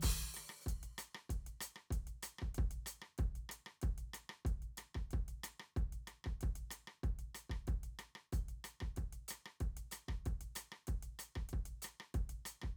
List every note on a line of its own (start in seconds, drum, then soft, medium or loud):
0.01 closed hi-hat medium
0.01 kick medium
0.01 hi-hat pedal soft
0.01 crash medium
0.34 cross-stick soft
0.34 open hi-hat medium
0.49 cross-stick soft
0.61 hi-hat pedal soft
0.66 kick medium
0.66 closed hi-hat medium
0.83 closed hi-hat soft
0.98 closed hi-hat medium
0.98 cross-stick medium
1.15 cross-stick medium
1.30 kick medium
1.30 closed hi-hat soft
1.47 closed hi-hat soft
1.61 closed hi-hat medium
1.61 cross-stick medium
1.76 cross-stick soft
1.91 kick medium
1.91 closed hi-hat soft
2.07 closed hi-hat soft
2.23 closed hi-hat medium
2.23 cross-stick medium
2.39 kick medium
2.39 cross-stick soft
2.55 kick medium
2.55 closed hi-hat soft
2.71 closed hi-hat soft
2.86 closed hi-hat medium
2.86 cross-stick soft
3.02 cross-stick soft
3.18 kick medium
3.18 closed hi-hat soft
3.36 closed hi-hat soft
3.49 cross-stick medium
3.49 closed hi-hat medium
3.66 cross-stick soft
3.82 kick medium
3.82 closed hi-hat soft
3.98 closed hi-hat soft
4.14 cross-stick medium
4.14 closed hi-hat medium
4.30 cross-stick medium
4.45 kick medium
4.45 closed hi-hat soft
4.62 closed hi-hat soft
4.78 cross-stick soft
4.78 closed hi-hat medium
4.95 kick soft
4.95 cross-stick soft
5.11 kick medium
5.11 closed hi-hat soft
5.28 closed hi-hat soft
5.44 cross-stick medium
5.44 closed hi-hat medium
5.60 cross-stick soft
5.77 kick medium
5.77 closed hi-hat soft
5.93 closed hi-hat soft
6.07 cross-stick soft
6.07 closed hi-hat soft
6.24 kick medium
6.24 cross-stick soft
6.41 kick medium
6.41 closed hi-hat soft
6.56 closed hi-hat soft
6.71 cross-stick soft
6.71 closed hi-hat medium
6.88 cross-stick soft
7.04 kick medium
7.04 closed hi-hat soft
7.19 closed hi-hat soft
7.35 closed hi-hat soft
7.35 cross-stick soft
7.50 kick soft
7.50 cross-stick soft
7.67 kick medium
7.67 closed hi-hat soft
7.84 closed hi-hat soft
7.99 cross-stick medium
7.99 closed hi-hat soft
8.15 cross-stick soft
8.33 closed hi-hat soft
8.33 kick medium
8.49 closed hi-hat soft
8.64 closed hi-hat soft
8.64 cross-stick medium
8.81 kick soft
8.81 cross-stick soft
8.97 kick medium
8.97 closed hi-hat soft
9.13 closed hi-hat soft
9.28 closed hi-hat medium
9.28 cross-stick medium
9.46 cross-stick soft
9.61 kick medium
9.61 closed hi-hat soft
9.77 closed hi-hat soft
9.92 closed hi-hat medium
9.92 cross-stick soft
10.09 kick medium
10.09 cross-stick soft
10.26 kick medium
10.26 closed hi-hat soft
10.41 closed hi-hat soft
10.56 closed hi-hat medium
10.56 cross-stick medium
10.72 cross-stick soft
10.87 kick medium
10.87 closed hi-hat soft
11.03 closed hi-hat soft
11.19 closed hi-hat medium
11.19 cross-stick soft
11.36 kick soft
11.36 cross-stick soft
11.49 closed hi-hat soft
11.53 kick medium
11.66 closed hi-hat soft
11.82 closed hi-hat medium
11.82 cross-stick soft
12.00 cross-stick soft
12.14 kick medium
12.14 closed hi-hat soft
12.30 closed hi-hat soft
12.46 closed hi-hat medium
12.46 cross-stick soft
12.62 kick soft
12.62 cross-stick soft